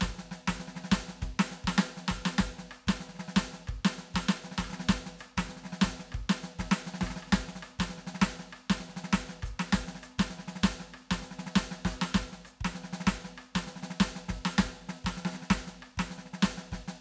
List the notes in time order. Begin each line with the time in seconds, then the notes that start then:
0.01 kick, snare
0.09 kick
0.18 snare
0.31 snare, hi-hat pedal
0.48 kick, snare
0.59 snare
0.68 snare
0.75 snare
0.84 snare
0.92 kick, snare, hi-hat pedal
1.08 snare
1.22 kick, snare
1.28 kick
1.31 kick
1.39 snare
1.48 snare, hi-hat pedal
1.64 kick, snare
1.78 snare
1.97 snare
2.08 kick, snare, hi-hat pedal
2.25 snare
2.38 kick, snare
2.46 kick
2.59 snare
2.71 cross-stick, hi-hat pedal
2.87 kick, snare
3.00 snare
3.09 snare
3.15 snare
3.19 snare
3.28 snare
3.35 kick, snare, hi-hat pedal
3.53 snare
3.67 kick, cross-stick
3.77 kick
3.85 snare
3.97 snare, hi-hat pedal
4.14 kick, snare
4.29 snare
4.44 snare
4.51 snare
4.58 kick, snare, hi-hat pedal
4.64 cross-stick
4.70 snare
4.73 snare
4.80 snare
4.89 kick, snare
4.95 kick
5.06 snare
5.19 cross-stick, hi-hat pedal
5.37 kick, snare
5.49 snare
5.56 snare
5.64 snare
5.65 snare
5.72 snare
5.81 kick, snare, hi-hat pedal
5.86 kick, snare
5.99 snare
6.12 kick, cross-stick
6.20 kick
6.29 snare
6.41 snare, hi-hat pedal
6.59 kick, snare
6.71 snare
6.87 snare
6.94 snare
7.01 kick, snare
7.05 cross-stick, hi-hat pedal
7.10 snare
7.16 snare
7.23 cross-stick
7.27 snare
7.32 kick, snare
7.39 kick
7.48 snare
7.55 snare
7.63 cross-stick, hi-hat pedal
7.79 kick, snare
7.90 snare
7.98 snare
8.07 snare
8.15 snare
8.22 kick, snare, hi-hat pedal
8.26 cross-stick
8.39 snare
8.53 cross-stick
8.70 kick, snare
8.80 snare, hi-hat pedal
8.89 snare
8.96 snare
9.04 snare
9.13 kick, snare
9.29 snare
9.43 kick, cross-stick, hi-hat pedal
9.51 kick
9.59 snare
9.73 kick, snare
9.82 kick
9.88 snare
9.95 snare
10.03 cross-stick, hi-hat pedal
10.19 kick, snare
10.30 snare
10.39 snare
10.48 snare
10.56 snare
10.63 kick, snare, hi-hat pedal
10.80 snare
10.94 cross-stick
11.11 kick, snare
11.22 snare, hi-hat pedal
11.31 snare
11.39 snare
11.46 snare
11.56 kick, snare
11.71 snare
11.85 kick, snare, hi-hat pedal
12.01 snare
12.14 kick, snare
12.21 kick
12.32 snare
12.45 cross-stick, hi-hat pedal
12.61 kick, snare
12.75 snare
12.84 snare
12.93 snare
13.00 snare
13.07 kick, snare, hi-hat pedal
13.24 snare
13.38 cross-stick
13.55 kick, snare
13.67 snare, hi-hat pedal
13.76 snare
13.83 snare
13.90 snare
14.00 kick, snare
14.16 snare
14.29 kick, snare, hi-hat pedal
14.45 snare
14.58 kick, snare
14.65 kick
14.68 kick
14.76 snare
14.89 snare, hi-hat pedal
15.04 kick, snare
15.17 snare
15.25 snare
15.32 snare
15.34 snare
15.42 snare
15.50 kick, snare, hi-hat pedal
15.56 kick
15.67 snare
15.82 cross-stick
15.97 kick, snare
16.10 snare, hi-hat pedal
16.18 snare
16.26 snare
16.33 snare
16.43 kick, snare
16.58 snare
16.72 kick, snare, hi-hat pedal
16.88 snare